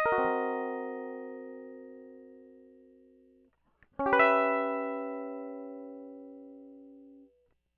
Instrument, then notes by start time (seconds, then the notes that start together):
electric guitar
0.00 D#5
0.06 A#4
0.13 F#4
0.19 C4
4.00 C#4
4.07 G4
4.13 B4
4.20 E5